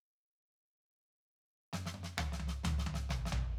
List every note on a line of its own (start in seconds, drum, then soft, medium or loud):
1.73 snare medium
1.73 high tom medium
1.86 snare medium
1.94 high tom medium
2.03 snare medium
2.17 snare medium
2.17 mid tom loud
2.32 snare medium
2.40 mid tom medium
2.48 snare medium
2.63 snare medium
2.63 mid tom loud
2.78 snare medium
2.86 mid tom loud
2.94 snare medium
3.09 snare medium
3.09 floor tom loud
3.25 snare medium
3.32 floor tom loud